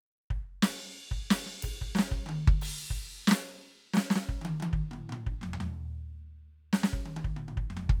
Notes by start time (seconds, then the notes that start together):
0.30 kick
0.63 snare, ride
1.11 kick
1.31 snare, ride
1.46 snare
1.63 kick, ride
1.81 kick
1.95 snare
1.99 snare
2.12 kick
2.26 high tom
2.29 high tom
2.48 kick
2.62 crash
2.90 kick
3.27 snare
3.31 snare
3.94 snare
3.97 snare
4.10 snare
4.16 snare
4.29 kick
4.42 high tom
4.45 high tom
4.60 high tom
4.63 high tom
4.73 kick
4.91 mid tom
4.93 mid tom
5.09 mid tom
5.12 mid tom
5.27 kick
5.41 floor tom
5.43 floor tom
5.53 floor tom
5.60 floor tom
6.73 snare
6.83 snare
6.93 kick
7.06 high tom
7.17 high tom
7.24 kick
7.37 mid tom
7.48 mid tom
7.57 kick
7.70 floor tom
7.77 floor tom
7.89 kick